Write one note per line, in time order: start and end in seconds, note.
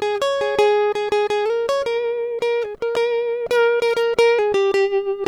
0.04 0.27 G#4
0.23 0.71 C#5
0.43 0.60 G#4
0.60 0.95 G#4
0.97 1.12 G#4
1.14 1.30 G#4
1.32 1.51 G#4
1.52 1.73 A#4
1.71 1.93 C#5
1.88 2.44 A#4
2.44 2.64 A#4
2.64 2.78 G#4
2.84 2.98 A#4
2.98 3.52 A#4
3.53 3.83 A#4
3.84 3.96 A#4
3.99 4.17 A#4
4.20 4.40 A#4
4.40 4.59 G#4
4.56 4.76 G4
4.76 5.27 G4